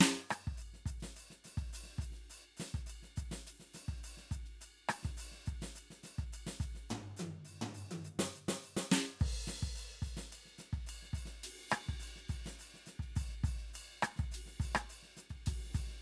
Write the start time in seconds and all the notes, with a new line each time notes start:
0.01 snare, hi-hat pedal
0.30 cross-stick, hi-hat pedal
0.47 kick
0.58 hi-hat pedal
0.62 ride bell
0.74 snare
0.86 kick, hi-hat pedal, ride
1.00 snare, ride
1.16 hi-hat pedal, ride bell
1.30 snare
1.44 snare, hi-hat pedal, ride
1.57 kick, ride
1.73 hi-hat pedal, ride
1.84 snare
1.99 kick, hi-hat pedal, ride
2.12 snare, ride
2.30 hi-hat pedal, ride bell
2.57 snare, hi-hat pedal, ride
2.74 kick, snare
2.86 hi-hat pedal, ride bell
3.03 snare
3.16 kick, hi-hat pedal, ride
3.31 snare, ride
3.47 hi-hat pedal, ride
3.60 snare
3.74 snare, hi-hat pedal, ride
3.88 kick, ride
4.04 hi-hat pedal, ride bell
4.17 snare
4.31 kick, hi-hat pedal, ride
4.46 ride
4.61 hi-hat pedal, ride bell
4.89 cross-stick, hi-hat pedal, ride
5.03 kick, snare
5.17 hi-hat pedal, ride bell
5.32 snare
5.46 kick, hi-hat pedal, ride
5.61 snare, ride
5.75 hi-hat pedal, ride bell
5.91 snare
6.03 snare, hi-hat pedal, ride
6.19 kick, ride
6.33 hi-hat pedal, ride bell
6.47 snare
6.60 kick, hi-hat pedal, ride
6.75 snare
6.90 floor tom, hi-hat pedal
7.17 hi-hat pedal, high tom
7.21 closed hi-hat
7.45 hi-hat pedal
7.62 floor tom
7.74 hi-hat pedal
7.91 high tom
8.05 hi-hat pedal
8.19 snare
8.35 hi-hat pedal
8.48 snare
8.63 hi-hat pedal
8.77 snare
8.92 snare, hi-hat pedal
9.20 kick, hi-hat pedal, crash
9.47 snare, hi-hat pedal
9.63 kick, snare
9.75 hi-hat pedal
9.80 ride bell
9.92 snare
10.02 kick, hi-hat pedal, ride
10.17 snare, ride
10.32 hi-hat pedal, ride bell
10.46 snare
10.58 snare, hi-hat pedal, ride
10.73 kick, ride
10.87 hi-hat pedal, ride bell
11.03 snare
11.13 kick, hi-hat pedal, ride
11.26 snare, ride
11.44 hi-hat pedal, ride
11.70 cross-stick, hi-hat pedal, ride
11.87 kick, snare
12.00 hi-hat pedal, ride bell
12.16 snare
12.29 kick, hi-hat pedal, ride
12.44 snare, ride
12.59 hi-hat pedal, ride bell
12.74 snare
12.86 snare, hi-hat pedal, ride
13.00 kick, ride
13.16 kick, hi-hat pedal, ride bell
13.29 snare
13.34 snare
13.37 snare
13.41 kick, snare, hi-hat pedal
13.46 ride
13.59 ride
13.74 hi-hat pedal, ride bell
14.02 cross-stick, hi-hat pedal, ride
14.16 kick, snare
14.32 hi-hat pedal, ride
14.46 snare
14.60 kick, hi-hat pedal, ride
14.74 cross-stick, ride
14.89 hi-hat pedal, ride bell
15.03 snare
15.17 snare, hi-hat pedal, ride
15.30 kick, ride
15.46 kick, hi-hat pedal, ride
15.59 snare
15.65 snare
15.69 snare
15.74 kick, hi-hat pedal, ride
15.89 snare